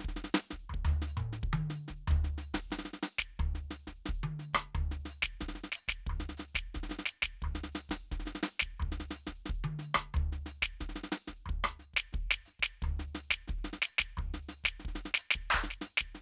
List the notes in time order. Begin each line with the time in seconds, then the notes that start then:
0.01 snare
0.05 kick, snare
0.17 snare
0.25 snare
0.42 hi-hat pedal
0.51 kick, snare
0.70 floor tom
0.75 kick
0.86 floor tom
1.03 snare
1.08 hi-hat pedal
1.18 kick, mid tom
1.34 snare
1.44 kick
1.54 high tom
1.71 snare
1.75 hi-hat pedal
1.89 kick, snare
2.08 kick, floor tom
2.25 snare
2.39 snare, hi-hat pedal
2.55 kick, snare
2.71 kick, snare
2.79 snare
2.86 snare
2.94 snare
3.04 snare, hi-hat pedal
3.19 kick, snare
3.40 kick, floor tom
3.56 snare
3.71 snare, hi-hat pedal
3.88 kick, snare
4.06 kick, snare
4.24 high tom
4.40 snare, hi-hat pedal
4.54 kick, cross-stick
4.76 kick, floor tom
4.92 snare
5.06 snare, hi-hat pedal
5.23 kick, snare
5.41 kick, snare
5.49 snare
5.56 snare
5.64 snare
5.73 snare, hi-hat pedal
5.89 kick, snare
6.07 kick, floor tom
6.21 snare
6.30 snare
6.38 snare, hi-hat pedal
6.56 kick, snare
6.75 kick, snare
6.84 snare
6.90 snare
6.92 snare
7.00 snare
7.06 snare, hi-hat pedal
7.23 kick, snare
7.43 kick, floor tom
7.56 snare
7.64 snare
7.76 snare, hi-hat pedal
7.90 kick, snare
8.12 kick, snare
8.21 snare
8.26 snare
8.36 snare
8.44 snare, hi-hat pedal
8.60 kick, snare
8.80 kick, floor tom
8.93 snare
9.01 snare
9.12 snare
9.16 hi-hat pedal
9.28 kick, snare
9.46 kick, snare
9.65 high tom
9.80 snare, hi-hat pedal
9.95 kick, cross-stick
10.15 kick, floor tom
10.33 snare
10.47 snare, hi-hat pedal
10.63 kick, snare
10.81 kick, snare
10.90 snare
10.96 snare
11.04 snare
11.12 snare, hi-hat pedal
11.28 kick, snare
11.47 kick, floor tom
11.65 cross-stick
11.80 snare, hi-hat pedal
11.95 kick, snare
12.13 kick, snare
12.32 snare
12.46 snare, hi-hat pedal
12.60 kick, snare
12.83 kick, floor tom
13.00 snare
13.16 snare, hi-hat pedal
13.31 kick, snare
13.48 kick, snare
13.59 snare
13.65 snare
13.74 snare
13.83 snare, hi-hat pedal
13.99 kick, snare
14.18 kick, floor tom
14.35 snare
14.49 snare, hi-hat pedal
14.65 kick, snare
14.80 snare
14.86 kick, snare
14.96 snare
15.06 snare
15.15 snare, hi-hat pedal
15.31 snare
15.36 kick
15.51 percussion
15.55 kick
15.64 snare
15.71 snare
15.82 snare, hi-hat pedal
15.98 kick, snare
16.16 snare